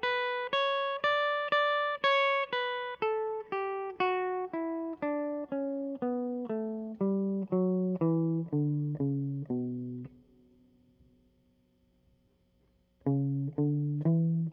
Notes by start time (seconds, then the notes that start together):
0.04 B4
0.53 C#5
1.04 D5
1.52 D5
2.04 C#5
2.53 B4
3.03 A4
3.53 G4
4.01 F#4
4.54 E4
5.03 D4
5.53 C#4
6.03 B3
6.50 A3
7.02 G3
7.53 F#3
8.02 E3
8.54 D3
9.01 C#3
9.52 B2
13.08 C#3
13.59 D3
14.07 E3